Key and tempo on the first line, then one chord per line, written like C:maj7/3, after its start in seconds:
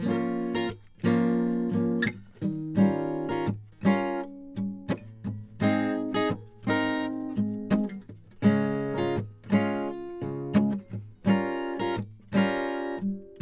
F minor, 85 BPM
0.00 A#:min/5
2.82 D#:9
5.65 G#:maj
8.47 C#:maj6
11.29 G:hdim7